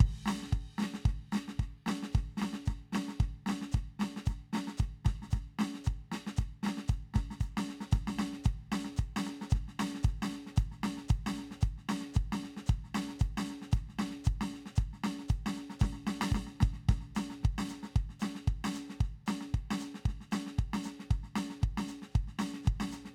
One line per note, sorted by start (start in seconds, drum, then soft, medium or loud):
0.01 kick loud
0.01 crash medium
0.26 snare medium
0.28 snare loud
0.43 snare soft
0.53 kick medium
0.53 snare soft
0.79 snare medium
0.82 snare medium
0.94 snare soft
1.06 kick medium
1.06 snare soft
1.32 snare medium
1.32 hi-hat pedal medium
1.35 snare medium
1.48 snare soft
1.60 kick soft
1.60 snare soft
1.87 snare medium
1.88 snare medium
2.03 snare soft
2.13 kick medium
2.13 snare soft
2.13 hi-hat pedal soft
2.38 snare medium
2.42 snare medium
2.53 snare soft
2.66 kick soft
2.66 snare soft
2.66 hi-hat pedal medium
2.93 snare medium
2.95 snare medium
3.09 snare soft
3.20 kick medium
3.20 snare soft
3.47 snare medium
3.49 snare medium
3.62 snare soft
3.72 kick medium
3.72 snare soft
3.72 hi-hat pedal medium
4.00 snare medium
4.02 snare medium
4.17 snare soft
4.26 kick soft
4.26 snare soft
4.26 hi-hat pedal medium
4.53 snare medium
4.55 snare medium
4.68 snare soft
4.78 kick medium
4.78 snare soft
4.78 hi-hat pedal medium
5.05 kick medium
5.05 snare medium
5.07 snare medium
5.22 snare soft
5.31 kick medium
5.31 snare soft
5.31 hi-hat pedal medium
5.59 snare medium
5.61 snare medium
5.74 snare soft
5.85 kick medium
5.85 snare soft
5.85 hi-hat pedal medium
6.12 snare medium
6.27 snare medium
6.37 kick medium
6.37 snare soft
6.37 hi-hat pedal medium
6.63 snare medium
6.67 snare medium
6.78 snare soft
6.88 kick medium
6.88 snare soft
6.88 hi-hat pedal medium
7.14 kick medium
7.14 snare medium
7.31 snare soft
7.41 kick soft
7.41 snare soft
7.41 hi-hat pedal medium
7.57 snare loud
7.69 snare soft
7.81 snare soft
7.92 kick medium
7.92 snare medium
7.92 hi-hat pedal medium
8.08 snare medium
8.19 snare loud
8.33 snare soft
8.44 kick medium
8.44 snare soft
8.44 hi-hat pedal medium
8.72 snare loud
8.85 snare soft
8.97 kick soft
8.97 snare soft
8.97 hi-hat pedal medium
9.17 snare loud
9.27 snare soft
9.42 snare soft
9.50 kick medium
9.50 snare soft
9.50 hi-hat pedal medium
9.68 snare soft
9.80 snare loud
9.95 snare soft
10.03 kick medium
10.03 snare soft
10.03 hi-hat pedal medium
10.23 snare loud
10.33 snare soft
10.47 snare soft
10.57 kick medium
10.57 snare soft
10.57 hi-hat pedal medium
10.72 snare soft
10.84 snare loud
10.98 snare soft
11.09 kick medium
11.09 snare soft
11.09 hi-hat pedal medium
11.27 snare loud
11.38 snare soft
11.51 snare soft
11.61 kick medium
11.61 snare soft
11.61 hi-hat pedal medium
11.78 snare soft
11.89 snare loud
12.01 snare soft
12.14 kick medium
12.14 snare soft
12.14 hi-hat pedal medium
12.33 snare loud
12.44 snare soft
12.57 snare soft
12.67 kick medium
12.67 snare soft
12.67 hi-hat pedal medium
12.84 snare soft
12.95 snare loud
13.09 snare soft
13.20 kick medium
13.20 snare soft
13.20 hi-hat pedal medium
13.38 snare loud
13.50 snare soft
13.62 snare soft
13.72 kick medium
13.72 snare soft
13.72 hi-hat pedal medium
13.89 snare soft
13.99 snare loud
14.11 snare soft
14.25 kick medium
14.25 snare soft
14.25 hi-hat pedal medium
14.41 snare loud
14.54 snare soft
14.66 snare soft
14.76 kick medium
14.76 snare soft
14.76 hi-hat pedal medium
14.93 snare soft
15.04 snare loud
15.19 snare soft
15.29 kick medium
15.29 snare soft
15.29 hi-hat pedal medium
15.46 snare loud
15.57 snare soft
15.70 snare soft
15.80 kick medium
15.80 snare medium
15.80 hi-hat pedal medium
15.93 snare soft
16.07 snare medium
16.21 snare loud
16.32 kick medium
16.32 snare medium
16.32 hi-hat pedal medium
16.47 snare soft
16.61 kick medium
16.61 snare medium
16.74 snare soft
16.89 kick medium
16.89 snare medium
17.01 snare soft
17.15 snare medium
17.15 hi-hat pedal medium
17.30 snare soft
17.43 kick medium
17.43 snare soft
17.58 snare loud
17.69 snare soft
17.69 hi-hat pedal medium
17.83 snare soft
17.96 kick medium
17.96 snare soft
18.10 snare soft
18.20 snare medium
18.20 hi-hat pedal medium
18.36 snare soft
18.48 kick medium
18.48 snare soft
18.65 snare loud
18.74 snare soft
18.74 hi-hat pedal medium
18.90 snare soft
19.01 kick medium
19.01 snare soft
19.27 snare loud
19.27 hi-hat pedal medium
19.41 snare soft
19.54 kick soft
19.54 snare soft
19.71 snare loud
19.80 snare soft
19.80 hi-hat pedal medium
19.95 snare soft
20.06 kick medium
20.06 snare soft
20.21 snare soft
20.32 snare loud
20.32 hi-hat pedal medium
20.47 snare soft
20.59 kick medium
20.59 snare soft
20.74 snare loud
20.84 snare soft
20.84 hi-hat pedal medium
21.00 snare soft
21.11 kick medium
21.11 snare soft
21.24 snare soft
21.36 snare loud
21.36 hi-hat pedal medium
21.50 snare soft
21.62 kick medium
21.62 snare soft
21.78 snare loud
21.88 snare soft
21.88 hi-hat pedal medium
22.02 snare soft
22.11 snare soft
22.11 hi-hat pedal soft
22.16 kick medium
22.28 snare soft
22.39 snare loud
22.39 hi-hat pedal medium
22.54 snare soft
22.64 snare soft
22.64 hi-hat pedal soft
22.68 kick medium
22.80 snare loud
22.92 snare soft
22.92 hi-hat pedal medium
23.05 snare soft